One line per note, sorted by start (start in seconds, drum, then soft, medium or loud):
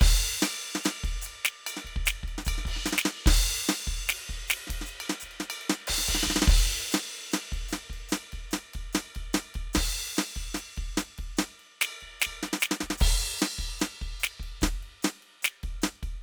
0.01 kick loud
0.01 crash loud
0.41 snare loud
0.41 hi-hat pedal loud
0.41 ride bell loud
0.62 ride soft
0.75 snare medium
0.84 snare loud
0.84 hi-hat pedal medium
0.84 ride bell loud
1.04 kick medium
1.04 ride soft
1.22 hi-hat pedal loud
1.26 ride bell medium
1.45 snare loud
1.67 hi-hat pedal medium
1.67 ride bell loud
1.77 snare medium
1.85 kick soft
1.85 ride bell soft
1.96 kick medium
2.06 snare loud
2.06 hi-hat pedal loud
2.06 ride bell medium
2.23 kick medium
2.28 ride bell soft
2.38 snare medium
2.45 kick medium
2.45 hi-hat pedal medium
2.45 ride bell loud
2.58 snare soft
2.65 kick medium
2.65 ride medium
2.76 snare soft
2.86 snare medium
2.86 hi-hat pedal medium
2.93 snare medium
2.98 snare loud
3.05 snare loud
3.26 kick loud
3.26 snare loud
3.26 crash loud
3.46 ride soft
3.68 snare loud
3.68 hi-hat pedal medium
3.68 ride bell medium
3.87 kick medium
3.87 ride soft
4.08 snare loud
4.08 hi-hat pedal medium
4.08 ride loud
4.29 kick soft
4.29 ride bell soft
4.48 snare loud
4.48 hi-hat pedal medium
4.48 ride loud
4.67 kick medium
4.67 snare soft
4.67 ride loud
4.81 snare medium
4.86 hi-hat pedal medium
4.91 ride bell soft
5.00 ride bell loud
5.10 snare loud
5.20 kick soft
5.20 hi-hat pedal medium
5.20 ride soft
5.31 ride bell soft
5.40 snare medium
5.50 hi-hat pedal medium
5.50 ride bell loud
5.61 ride soft
5.70 snare loud
5.87 kick soft
5.87 crash loud
5.98 snare soft
6.05 kick medium
6.05 hi-hat pedal medium
6.05 ride loud
6.15 snare medium
6.23 kick soft
6.23 snare medium
6.30 snare medium
6.36 snare loud
6.42 snare loud
6.48 kick loud
6.48 crash loud
6.92 snare loud
6.92 hi-hat pedal loud
6.92 ride bell soft
7.32 snare loud
7.32 hi-hat pedal medium
7.32 ride bell medium
7.52 kick medium
7.52 ride soft
7.69 hi-hat pedal medium
7.73 snare medium
7.73 ride bell medium
7.90 kick soft
7.90 ride soft
8.09 snare loud
8.09 hi-hat pedal medium
8.14 ride bell medium
8.32 kick soft
8.32 ride bell soft
8.51 snare loud
8.51 hi-hat pedal medium
8.51 ride bell medium
8.74 kick soft
8.74 ride bell medium
8.93 snare loud
8.93 hi-hat pedal medium
8.93 ride bell medium
9.15 kick soft
9.15 ride bell medium
9.33 snare loud
9.33 hi-hat pedal medium
9.33 ride bell medium
9.54 kick medium
9.54 ride bell soft
9.73 kick medium
9.73 snare loud
9.73 hi-hat pedal medium
9.73 crash loud
10.15 snare loud
10.15 hi-hat pedal medium
10.15 ride bell medium
10.36 kick soft
10.36 ride bell soft
10.54 snare medium
10.54 hi-hat pedal medium
10.54 ride bell medium
10.77 kick medium
10.77 ride bell soft
10.97 snare loud
10.97 hi-hat pedal medium
10.97 ride bell soft
11.18 kick soft
11.18 ride soft
11.37 snare loud
11.37 hi-hat pedal medium
11.37 ride bell medium
11.60 ride soft
11.81 snare loud
11.81 hi-hat pedal medium
11.81 ride bell loud
12.01 kick soft
12.01 ride bell soft
12.20 snare loud
12.20 hi-hat pedal soft
12.20 ride bell loud
12.27 kick soft
12.43 snare medium
12.53 snare loud
12.60 snare loud
12.60 hi-hat pedal medium
12.71 snare loud
12.81 kick soft
12.81 snare medium
12.90 snare medium
12.98 kick loud
12.98 hi-hat pedal medium
12.98 crash medium
13.39 snare loud
13.39 hi-hat pedal medium
13.39 ride bell medium
13.59 kick medium
13.59 ride soft
13.79 snare loud
13.79 hi-hat pedal medium
13.79 ride bell soft
14.02 kick soft
14.02 ride soft
14.20 snare loud
14.20 hi-hat pedal medium
14.24 ride bell medium
14.40 kick soft
14.40 ride soft
14.61 kick medium
14.61 snare loud
14.61 hi-hat pedal medium
14.61 ride medium
14.83 ride soft
15.02 snare loud
15.02 hi-hat pedal medium
15.02 ride medium
15.22 ride soft
15.42 snare loud
15.42 hi-hat pedal medium
15.63 kick medium
15.63 ride bell soft
15.82 snare loud
15.82 hi-hat pedal medium
16.03 kick medium
16.03 ride bell soft